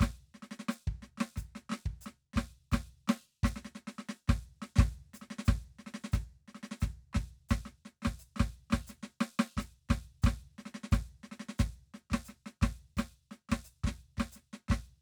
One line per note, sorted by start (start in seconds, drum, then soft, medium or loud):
0.01 kick medium
0.01 snare medium
0.01 hi-hat pedal medium
0.03 snare medium
0.35 snare soft
0.43 snare soft
0.52 snare soft
0.60 snare soft
0.69 snare medium
0.69 hi-hat pedal medium
0.88 kick medium
1.03 snare soft
1.18 snare soft
1.21 snare medium
1.37 kick soft
1.37 snare soft
1.37 hi-hat pedal medium
1.56 snare soft
1.70 snare soft
1.72 snare medium
1.87 kick medium
2.02 hi-hat pedal medium
2.07 snare soft
2.34 kick medium
2.34 snare soft
2.38 snare medium
2.72 kick medium
2.72 snare soft
2.72 hi-hat pedal medium
2.74 snare medium
3.08 snare soft
3.08 snare loud
3.44 kick medium
3.44 snare medium
3.44 hi-hat pedal medium
3.57 snare soft
3.66 snare soft
3.76 snare soft
3.88 snare medium
3.99 snare soft
4.10 snare medium
4.29 kick medium
4.29 snare soft
4.30 snare medium
4.63 snare medium
4.77 kick loud
4.77 snare medium
4.80 snare medium
5.14 snare soft
5.14 hi-hat pedal medium
5.22 snare soft
5.31 snare soft
5.39 snare medium
5.46 kick loud
5.46 snare medium
5.46 hi-hat pedal medium
5.80 snare soft
5.87 snare soft
5.95 snare medium
6.05 snare medium
6.13 kick medium
6.13 snare medium
6.13 hi-hat pedal medium
6.49 snare soft
6.55 snare soft
6.64 snare soft
6.72 snare medium
6.81 kick medium
6.81 snare medium
6.81 hi-hat pedal medium
7.14 kick medium
7.14 cross-stick soft
7.14 snare medium
7.50 kick medium
7.50 snare medium
7.50 hi-hat pedal medium
7.66 snare soft
7.86 snare soft
8.03 snare soft
8.06 kick medium
8.06 snare medium
8.20 hi-hat pedal medium
8.37 snare soft
8.40 kick medium
8.40 snare medium
8.71 snare soft
8.73 kick medium
8.73 snare loud
8.88 snare soft
8.88 hi-hat pedal medium
9.04 snare soft
9.22 snare medium
9.40 snare loud
9.58 kick soft
9.58 snare medium
9.58 hi-hat pedal medium
9.90 kick medium
9.90 snare soft
9.90 snare medium
10.23 kick loud
10.23 snare soft
10.23 hi-hat pedal medium
10.27 snare medium
10.59 snare soft
10.66 snare soft
10.75 snare soft
10.84 snare soft
10.92 kick loud
10.92 snare medium
10.92 hi-hat pedal medium
11.24 snare soft
11.32 snare soft
11.40 snare soft
11.50 snare medium
11.59 kick medium
11.59 snare medium
11.59 hi-hat pedal medium
11.95 snare soft
12.11 kick soft
12.11 snare soft
12.14 snare medium
12.25 snare soft
12.25 hi-hat pedal medium
12.47 snare soft
12.62 kick medium
12.62 snare soft
12.62 snare medium
12.98 kick soft
12.98 snare soft
12.98 snare medium
12.98 hi-hat pedal medium
13.32 snare soft
13.50 kick soft
13.50 snare soft
13.53 snare medium
13.65 hi-hat pedal medium
13.85 kick medium
13.85 snare soft
13.88 snare medium
14.18 kick soft
14.18 snare soft
14.21 snare medium
14.33 snare soft
14.33 hi-hat pedal medium
14.54 snare soft
14.69 kick medium
14.69 snare soft
14.72 snare medium